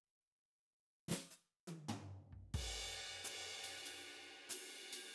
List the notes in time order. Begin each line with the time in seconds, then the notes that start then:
1.08 snare
1.11 snare
1.31 hi-hat pedal
1.67 high tom
1.88 floor tom
2.32 kick
2.54 kick, crash, ride
3.24 hi-hat pedal, ride
3.64 ride
3.85 ride
4.49 hi-hat pedal, ride
4.93 ride